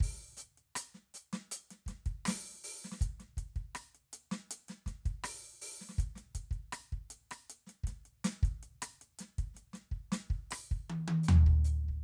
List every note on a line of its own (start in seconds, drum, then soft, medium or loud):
0.01 open hi-hat medium
0.01 kick soft
0.15 snare soft
0.38 closed hi-hat soft
0.38 hi-hat pedal medium
0.58 closed hi-hat soft
0.76 closed hi-hat medium
0.76 cross-stick medium
0.95 snare soft
1.15 hi-hat pedal medium
1.15 open hi-hat soft
1.33 snare soft
1.33 closed hi-hat soft
1.52 closed hi-hat medium
1.71 snare soft
1.71 closed hi-hat soft
1.87 kick soft
1.87 snare soft
1.87 closed hi-hat soft
2.06 kick soft
2.06 closed hi-hat soft
2.26 open hi-hat medium
2.26 cross-stick medium
2.26 snare medium
2.51 snare soft
2.54 snare soft
2.65 open hi-hat medium
2.85 snare soft
2.92 snare soft
2.98 snare soft
2.98 hi-hat pedal soft
3.02 kick soft
3.02 closed hi-hat medium
3.20 snare soft
3.20 closed hi-hat soft
3.38 kick soft
3.38 closed hi-hat soft
3.56 kick soft
3.56 closed hi-hat soft
3.75 cross-stick medium
3.75 closed hi-hat soft
3.95 closed hi-hat soft
4.14 closed hi-hat medium
4.32 snare soft
4.32 closed hi-hat soft
4.51 closed hi-hat medium
4.69 snare soft
4.69 closed hi-hat soft
4.87 kick soft
4.87 snare soft
4.87 closed hi-hat soft
5.06 kick soft
5.06 closed hi-hat soft
5.24 open hi-hat medium
5.24 cross-stick medium
5.62 open hi-hat medium
5.82 snare soft
5.90 snare soft
5.95 kick soft
5.95 snare soft
5.95 hi-hat pedal soft
6.00 closed hi-hat soft
6.16 snare soft
6.16 closed hi-hat soft
6.35 kick soft
6.35 closed hi-hat medium
6.51 kick soft
6.51 closed hi-hat soft
6.73 cross-stick medium
6.73 closed hi-hat medium
6.93 kick soft
6.93 closed hi-hat soft
7.11 closed hi-hat medium
7.31 cross-stick medium
7.31 closed hi-hat soft
7.50 closed hi-hat medium
7.67 snare soft
7.67 closed hi-hat soft
7.84 kick soft
7.84 snare soft
7.84 closed hi-hat soft
8.06 closed hi-hat soft
8.25 snare medium
8.25 closed hi-hat medium
8.43 kick soft
8.43 closed hi-hat soft
8.63 closed hi-hat soft
8.83 cross-stick medium
8.83 closed hi-hat medium
9.02 closed hi-hat soft
9.19 snare soft
9.19 closed hi-hat medium
9.39 kick soft
9.39 closed hi-hat soft
9.55 snare soft
9.55 closed hi-hat soft
9.74 snare soft
9.74 closed hi-hat soft
9.92 kick soft
10.12 snare medium
10.12 closed hi-hat medium
10.31 kick soft
10.51 cross-stick medium
10.51 open hi-hat medium
10.72 kick soft
10.90 high tom medium
11.08 high tom loud
11.24 hi-hat pedal medium
11.29 floor tom loud
11.47 kick soft
11.65 hi-hat pedal medium
11.89 kick soft